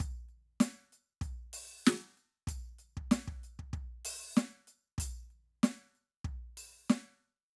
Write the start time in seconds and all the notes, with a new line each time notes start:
0.00 kick, percussion
0.29 percussion
0.61 snare, percussion
0.93 percussion
1.22 kick, percussion
1.54 percussion
1.86 snare, percussion
2.18 percussion
2.48 kick, percussion
2.79 percussion
2.97 kick
3.12 snare, percussion
3.28 kick
3.44 percussion
3.59 kick
3.74 kick, percussion
4.05 percussion
4.37 snare, percussion
4.68 percussion
4.98 kick, percussion
5.31 percussion
5.64 snare, percussion
5.96 percussion
6.25 kick, percussion
6.58 percussion
6.90 snare, percussion